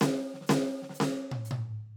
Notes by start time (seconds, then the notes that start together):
0.00 snare, hi-hat pedal
0.34 snare
0.41 snare
0.47 snare, hi-hat pedal
0.82 snare
0.89 snare
0.94 hi-hat pedal
1.00 snare
1.31 high tom
1.45 hi-hat pedal
1.51 high tom